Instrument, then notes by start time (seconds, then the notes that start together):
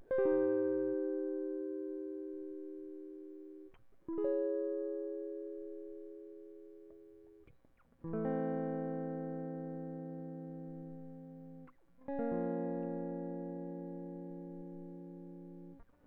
electric guitar
0.11 C5
0.19 G4
0.26 D#4
4.09 E4
4.18 G#4
4.25 C#5
8.05 E3
8.14 A3
8.26 C4
12.09 C#4
12.20 A#3
12.33 F3